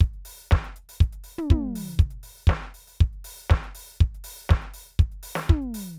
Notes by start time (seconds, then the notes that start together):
0.01 kick, closed hi-hat
0.14 closed hi-hat
0.25 open hi-hat
0.38 open hi-hat
0.47 hi-hat pedal
0.51 kick, snare
0.65 closed hi-hat
0.76 open hi-hat
0.89 open hi-hat
0.95 hi-hat pedal
1.01 closed hi-hat, kick
1.13 closed hi-hat
1.24 open hi-hat
1.38 floor tom
1.44 hi-hat pedal
1.51 kick, floor tom
1.76 open hi-hat
1.88 open hi-hat
1.93 hi-hat pedal
1.99 kick, closed hi-hat
2.11 closed hi-hat
2.23 open hi-hat
2.38 open hi-hat
2.43 hi-hat pedal
2.47 kick, snare
2.63 closed hi-hat
2.74 open hi-hat
2.88 open hi-hat
2.96 hi-hat pedal
3.01 kick, closed hi-hat
3.13 closed hi-hat
3.25 open hi-hat
3.38 open hi-hat
3.46 snare, hi-hat pedal
3.51 kick
3.64 closed hi-hat
3.75 open hi-hat
3.90 open hi-hat
3.96 hi-hat pedal
4.01 kick, closed hi-hat
4.15 closed hi-hat
4.24 open hi-hat
4.38 open hi-hat
4.47 snare, hi-hat pedal
4.51 kick
4.62 closed hi-hat
4.74 open hi-hat
4.89 open hi-hat
4.94 hi-hat pedal
4.99 kick, closed hi-hat
5.12 closed hi-hat
5.23 open hi-hat
5.36 snare
5.46 kick, floor tom, hi-hat pedal
5.62 closed hi-hat
5.74 open hi-hat
5.87 open hi-hat
5.95 hi-hat pedal